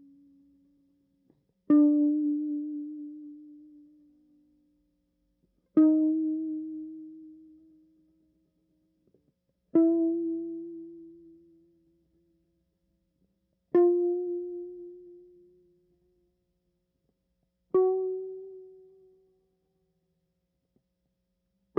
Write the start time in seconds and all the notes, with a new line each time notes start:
1.70 D4
2.26 D4
5.78 D#4
9.77 E4
10.28 E4
13.76 F4
14.29 F4
17.75 F#4